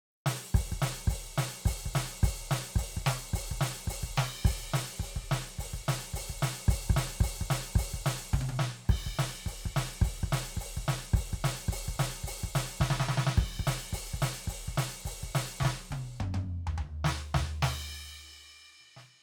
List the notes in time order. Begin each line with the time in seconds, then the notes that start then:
0.26 open hi-hat, snare
0.54 open hi-hat, kick
0.72 kick
0.82 open hi-hat, snare
1.07 open hi-hat, kick
1.38 open hi-hat, snare
1.65 open hi-hat, kick
1.86 kick
1.95 open hi-hat, snare
2.23 open hi-hat, kick
2.51 open hi-hat, snare
2.76 open hi-hat, kick
2.97 kick
3.06 open hi-hat, snare
3.33 open hi-hat, kick
3.51 kick
3.61 open hi-hat, snare
3.87 open hi-hat, kick
4.03 kick
4.17 snare, crash
4.45 open hi-hat, kick
4.74 open hi-hat, snare
5.00 open hi-hat, kick
5.16 kick
5.31 open hi-hat, snare
5.59 open hi-hat, kick
5.73 kick
5.88 open hi-hat, snare
6.14 open hi-hat, kick
6.29 kick
6.42 open hi-hat, snare
6.68 open hi-hat, kick
6.90 kick
6.96 open hi-hat, snare
7.20 open hi-hat, kick
7.41 kick
7.50 open hi-hat, snare
7.75 open hi-hat, kick
7.94 kick
8.06 open hi-hat, snare
8.33 kick, high tom
8.41 high tom
8.49 high tom
8.59 snare
8.85 snare
8.89 kick, crash
9.06 kick
9.19 open hi-hat, snare
9.46 open hi-hat, kick
9.65 kick
9.76 open hi-hat, snare
10.02 open hi-hat, kick
10.23 kick
10.32 open hi-hat, snare
10.57 open hi-hat, kick
10.77 kick
10.88 open hi-hat, snare
11.13 open hi-hat, kick
11.33 kick
11.44 open hi-hat, snare
11.68 open hi-hat, kick
11.88 kick
11.99 open hi-hat, snare
12.24 open hi-hat, kick
12.43 kick
12.55 open hi-hat, snare
12.80 kick, snare
12.90 snare
13.00 snare
13.09 snare
13.17 snare
13.27 snare
13.37 kick, crash
13.59 kick
13.67 open hi-hat, snare
13.93 open hi-hat, kick
14.14 kick
14.22 open hi-hat, snare
14.47 open hi-hat, kick
14.68 kick
14.77 open hi-hat, snare
15.05 open hi-hat, kick
15.23 kick
15.35 open hi-hat, snare
15.60 kick, snare
15.65 snare
15.91 kick, high tom
16.18 kick, hi-hat pedal, mid tom
16.34 mid tom
16.67 floor tom
16.78 floor tom
17.04 snare
17.06 snare
17.34 snare, floor tom
17.62 snare, crash
18.80 snare
18.97 snare
19.18 snare